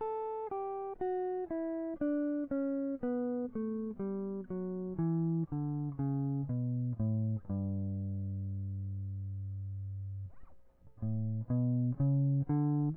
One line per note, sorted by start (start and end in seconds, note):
0.02 0.52 A4
0.52 0.97 G4
1.02 1.49 F#4
1.51 1.97 E4
2.02 2.48 D4
2.52 2.99 C#4
3.04 3.50 B3
3.57 3.94 A3
4.01 4.45 G3
4.53 4.98 F#3
5.00 5.48 E3
5.56 5.96 D3
6.01 6.47 C#3
6.53 6.96 B2
7.03 7.41 A2
7.53 10.30 G2
11.04 11.49 A2
11.52 11.96 B2
12.02 12.46 C#3
12.51 12.94 D3